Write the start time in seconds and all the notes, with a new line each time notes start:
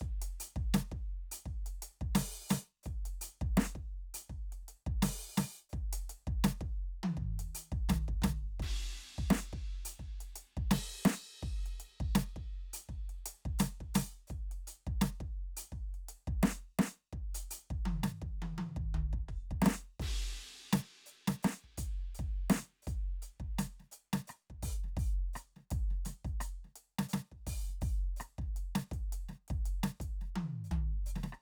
0.01 kick
0.22 closed hi-hat
0.40 closed hi-hat
0.56 kick
0.74 snare
0.92 kick
1.32 closed hi-hat
1.46 kick
1.66 closed hi-hat
1.82 closed hi-hat
2.01 kick
2.15 open hi-hat, snare
2.50 open hi-hat, snare
2.83 kick, hi-hat pedal
3.06 closed hi-hat
3.21 closed hi-hat
3.41 kick
3.57 snare
3.75 kick
4.14 closed hi-hat
4.30 kick
4.52 closed hi-hat
4.63 kick
4.68 closed hi-hat
4.86 kick
5.02 open hi-hat, snare
5.37 open hi-hat, snare
5.69 kick, hi-hat pedal
5.93 closed hi-hat
6.10 closed hi-hat
6.27 kick
6.44 snare
6.61 kick
7.03 high tom
7.17 kick
7.39 closed hi-hat
7.55 closed hi-hat
7.72 kick
7.89 snare, floor tom
8.08 kick
8.22 snare, floor tom
8.60 kick, ride
9.18 kick
9.30 snare
9.53 kick
9.85 closed hi-hat
9.99 kick
10.21 closed hi-hat
10.36 closed hi-hat
10.57 kick
10.71 snare, crash
11.05 snare, hi-hat pedal
11.43 kick
11.66 closed hi-hat
11.80 closed hi-hat
12.00 kick
12.15 snare
12.36 kick
12.73 closed hi-hat
12.89 kick
13.09 closed hi-hat
13.26 closed hi-hat
13.45 kick
13.59 open hi-hat, snare
13.81 kick
13.94 open hi-hat, snare
14.27 kick, hi-hat pedal
14.51 closed hi-hat
14.67 closed hi-hat
14.87 kick
15.01 snare
15.20 kick
15.57 closed hi-hat
15.72 kick
15.94 closed hi-hat
16.09 closed hi-hat
16.27 kick
16.43 snare
16.79 snare
17.13 kick
17.35 closed hi-hat
17.51 closed hi-hat
17.70 kick
17.86 high tom
18.03 snare
18.22 kick
18.42 high tom
18.58 high tom
18.76 kick
18.94 floor tom
19.13 kick
19.29 kick
19.51 kick
19.62 snare
19.66 snare
20.00 kick, crash, ride
20.73 snare
21.06 hi-hat pedal
21.28 snare
21.43 snare, hi-hat pedal
21.64 kick
21.78 open hi-hat, kick
22.15 open hi-hat
22.19 kick
22.50 open hi-hat, snare
22.56 snare
22.69 snare
22.82 hi-hat pedal
22.87 closed hi-hat, kick
23.22 closed hi-hat
23.40 kick
23.59 closed hi-hat, snare
23.80 snare
23.92 closed hi-hat, hi-hat pedal
24.13 snare
24.27 cross-stick, hi-hat pedal
24.50 kick
24.63 open hi-hat, kick
24.84 snare
24.88 snare
24.97 open hi-hat, kick
25.33 closed hi-hat, cross-stick, hi-hat pedal
25.56 snare
25.71 kick, closed hi-hat
25.90 snare
26.05 closed hi-hat, snare
26.25 closed hi-hat, kick
26.40 closed hi-hat, cross-stick
26.64 snare
26.76 closed hi-hat
26.99 snare
27.09 hi-hat pedal
27.13 snare
27.32 kick
27.47 open hi-hat, kick
27.69 snare
27.81 open hi-hat, kick
28.16 cross-stick, hi-hat pedal
28.21 closed hi-hat
28.38 kick, snare
28.56 closed hi-hat
28.75 snare
28.92 kick, closed hi-hat
29.12 closed hi-hat
29.29 snare
29.48 kick, closed hi-hat
29.66 closed hi-hat
29.83 snare
30.00 kick, closed hi-hat
30.21 snare
30.36 high tom
30.64 hi-hat pedal
30.71 floor tom
31.06 hi-hat pedal
31.16 snare
31.23 snare
31.32 cross-stick